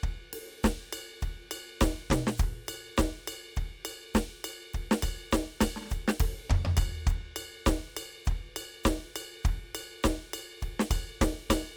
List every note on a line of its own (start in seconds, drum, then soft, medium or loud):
0.01 kick loud
0.01 hi-hat pedal soft
0.01 ride soft
0.33 ride loud
0.63 kick medium
0.63 snare loud
0.63 hi-hat pedal medium
0.63 ride medium
0.93 ride bell loud
1.21 kick medium
1.21 hi-hat pedal soft
1.21 ride medium
1.51 ride bell loud
1.81 kick loud
1.81 snare loud
1.81 hi-hat pedal medium
1.81 ride bell medium
2.10 kick medium
2.10 snare loud
2.10 mid tom loud
2.27 snare loud
2.37 kick loud
2.37 hi-hat pedal medium
2.37 ride medium
2.66 hi-hat pedal soft
2.66 ride bell loud
2.97 kick loud
2.97 snare loud
2.97 hi-hat pedal medium
2.97 ride medium
3.28 ride bell loud
3.55 kick medium
3.55 hi-hat pedal soft
3.55 ride medium
3.85 ride bell loud
4.14 kick medium
4.14 snare loud
4.14 hi-hat pedal medium
4.14 ride medium
4.44 ride bell loud
4.73 kick medium
4.73 hi-hat pedal soft
4.73 ride medium
4.91 snare loud
5.02 kick medium
5.02 ride bell loud
5.31 kick medium
5.31 snare loud
5.31 hi-hat pedal medium
5.31 ride medium
5.61 kick medium
5.61 snare loud
5.61 ride bell loud
5.76 snare medium
5.81 snare soft
5.85 snare soft
5.87 snare soft
5.89 kick medium
5.89 snare soft
5.89 hi-hat pedal medium
5.89 ride medium
6.08 snare loud
6.20 kick loud
6.20 ride loud
6.50 kick loud
6.50 floor tom loud
6.65 floor tom loud
6.77 kick loud
6.77 ride bell loud
7.07 kick loud
7.07 hi-hat pedal medium
7.36 ride bell loud
7.66 kick loud
7.66 snare loud
7.66 hi-hat pedal medium
7.66 ride medium
7.97 ride bell loud
8.25 kick loud
8.25 hi-hat pedal medium
8.25 ride soft
8.49 kick soft
8.56 ride bell loud
8.84 kick loud
8.84 snare loud
8.84 hi-hat pedal medium
8.84 ride medium
9.04 kick soft
9.16 ride bell loud
9.43 kick loud
9.43 hi-hat pedal soft
9.43 ride medium
9.75 closed hi-hat soft
9.75 ride bell loud
10.03 kick medium
10.03 snare loud
10.03 hi-hat pedal medium
10.03 ride medium
10.33 ride bell loud
10.60 kick medium
10.60 hi-hat pedal soft
10.60 ride medium
10.79 snare loud
10.89 kick loud
10.89 hi-hat pedal soft
10.89 ride bell loud
11.21 kick loud
11.21 snare loud
11.21 ride loud
11.50 kick medium
11.50 snare loud
11.50 ride bell loud